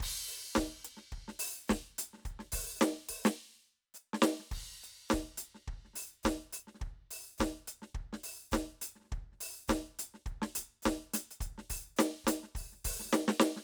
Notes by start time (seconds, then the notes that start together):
0.00 kick, hi-hat pedal, crash
0.28 open hi-hat
0.54 kick, snare, hi-hat pedal
0.85 closed hi-hat
0.97 snare
1.12 kick, closed hi-hat
1.28 snare
1.39 open hi-hat
1.68 kick, snare, hi-hat pedal
1.98 closed hi-hat
2.13 snare
2.18 snare
2.21 closed hi-hat, kick, snare
2.39 snare
2.52 open hi-hat, kick
2.78 snare, hi-hat pedal
3.09 kick, open hi-hat
3.24 snare, hi-hat pedal
3.94 hi-hat pedal
4.13 snare
4.22 snare
4.39 snare
4.51 kick, crash
4.83 open hi-hat
5.09 snare, hi-hat pedal
5.13 kick
5.37 closed hi-hat
5.54 snare
5.67 kick
5.85 snare
5.93 open hi-hat, snare
6.23 kick, snare, hi-hat pedal
6.53 open hi-hat
6.67 snare
6.74 snare
6.80 kick, snare, closed hi-hat
7.10 open hi-hat
7.38 kick, snare, hi-hat pedal
7.67 closed hi-hat
7.82 snare
7.94 kick, closed hi-hat
8.13 snare
8.23 open hi-hat
8.51 kick, snare, hi-hat pedal
8.81 open hi-hat
8.95 snare
9.00 snare
9.04 snare
9.08 snare
9.10 kick, snare, closed hi-hat
9.32 snare
9.39 open hi-hat, snare
9.68 kick, snare, hi-hat pedal
9.99 closed hi-hat
10.14 snare
10.26 kick, closed hi-hat
10.42 snare
10.55 closed hi-hat, kick
10.82 kick, snare, hi-hat pedal
11.13 closed hi-hat, snare
11.31 closed hi-hat
11.40 closed hi-hat, kick
11.58 snare
11.70 open hi-hat, kick
11.96 closed hi-hat, snare, hi-hat pedal
12.24 closed hi-hat, kick, snare
12.43 snare
12.55 open hi-hat, kick
12.72 snare
12.84 open hi-hat, kick
12.99 snare
13.05 snare
13.09 snare, hi-hat pedal
13.13 snare
13.28 snare
13.40 snare
13.56 snare